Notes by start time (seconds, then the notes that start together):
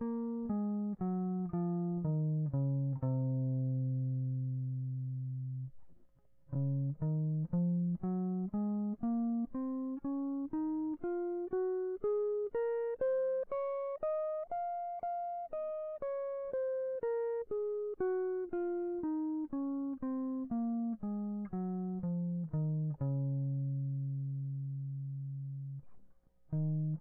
0.02 A#3
0.50 G#3
1.02 F#3
1.54 F3
2.06 D#3
2.55 C#3
3.05 C3
6.54 C#3
7.03 D#3
7.54 F3
8.05 F#3
8.55 G#3
9.04 A#3
9.55 C4
10.05 C#4
10.54 D#4
11.04 F4
11.53 F#4
12.04 G#4
12.55 A#4
13.02 C5
13.52 C#5
14.03 D#5
14.52 F5
15.04 F5
15.53 D#5
16.02 C#5
16.54 C5
17.03 A#4
17.52 G#4
18.01 F#4
18.53 F4
19.04 D#4
19.53 C#4
20.03 C4
20.52 A#3
21.04 G#3
21.54 F#3
22.04 F3
22.55 D#3
23.03 C#3
26.54 D#3